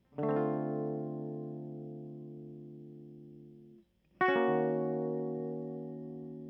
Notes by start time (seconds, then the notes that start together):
0.20 D3
0.24 A3
0.29 C4
0.37 F4
4.21 F#4
4.29 C#4
4.36 A#3
4.49 D#3